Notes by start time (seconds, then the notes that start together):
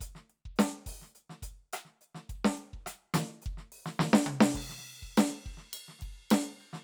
0.01 closed hi-hat, kick
0.07 kick
0.15 snare
0.30 closed hi-hat
0.46 kick
0.56 closed hi-hat, snare, hi-hat pedal
0.87 open hi-hat, kick
0.92 kick
1.02 snare
1.09 hi-hat pedal
1.15 closed hi-hat
1.30 snare
1.40 closed hi-hat, kick, snare
1.48 kick
1.73 closed hi-hat, cross-stick
1.85 snare
2.01 hi-hat pedal
2.15 snare
2.30 kick, closed hi-hat
2.35 kick
2.45 snare
2.58 closed hi-hat
2.74 kick
2.87 closed hi-hat, cross-stick
3.14 closed hi-hat, snare
3.42 open hi-hat, hi-hat pedal
3.46 kick
3.53 kick
3.58 kick, snare
3.68 kick
3.72 open hi-hat
3.86 snare
4.00 snare
4.13 snare, hi-hat pedal
4.27 high tom
4.41 snare
4.55 kick, crash
4.61 kick
4.64 kick
4.70 snare
4.78 snare, closed hi-hat
5.03 kick
5.18 snare, hi-hat pedal, ride bell
5.29 snare
5.46 kick, ride
5.52 kick
5.58 snare
5.73 hi-hat pedal, ride bell
5.89 snare
5.99 kick, snare, ride
6.08 kick
6.31 snare, hi-hat pedal, ride bell
6.61 ride
6.73 snare